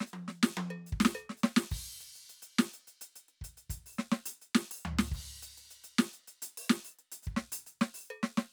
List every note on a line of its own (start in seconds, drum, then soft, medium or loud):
0.01 snare medium
0.07 hi-hat pedal medium
0.14 high tom medium
0.28 snare medium
0.43 snare loud
0.57 high tom loud
0.71 percussion medium
0.87 hi-hat pedal medium
0.93 kick medium
0.99 kick soft
0.99 snare loud
1.03 kick soft
1.03 snare loud
1.15 percussion loud
1.30 snare medium
1.38 hi-hat pedal medium
1.44 snare loud
1.57 snare loud
1.64 cross-stick soft
1.64 hi-hat pedal soft
1.72 kick medium
1.72 crash medium
1.78 kick soft
2.01 closed hi-hat medium
2.15 closed hi-hat soft
2.30 closed hi-hat soft
2.43 closed hi-hat medium
2.59 snare loud
2.74 closed hi-hat medium
2.88 closed hi-hat medium
3.02 open hi-hat medium
3.16 closed hi-hat medium
3.29 closed hi-hat soft
3.42 closed hi-hat medium
3.42 kick soft
3.57 closed hi-hat soft
3.70 closed hi-hat medium
3.70 kick soft
3.78 kick soft
3.86 open hi-hat medium
3.95 open hi-hat soft
3.99 snare medium
4.12 snare loud
4.26 closed hi-hat loud
4.42 closed hi-hat soft
4.55 snare loud
4.72 open hi-hat loud
4.83 floor tom medium
4.83 hi-hat pedal soft
4.99 snare loud
5.06 hi-hat pedal medium
5.12 kick soft
5.12 crash medium
5.18 kick soft
5.21 kick soft
5.43 closed hi-hat medium
5.58 closed hi-hat medium
5.66 closed hi-hat soft
5.71 closed hi-hat soft
5.84 closed hi-hat medium
5.99 snare loud
6.14 closed hi-hat soft
6.28 closed hi-hat medium
6.42 closed hi-hat loud
6.58 open hi-hat loud
6.66 hi-hat pedal soft
6.70 snare loud
6.85 open hi-hat medium
6.99 closed hi-hat medium
7.12 closed hi-hat medium
7.23 hi-hat pedal medium
7.27 kick soft
7.33 kick soft
7.33 snare medium
7.52 open hi-hat loud
7.67 open hi-hat medium
7.82 snare loud
7.94 open hi-hat medium
8.11 percussion loud
8.23 snare medium
8.38 snare loud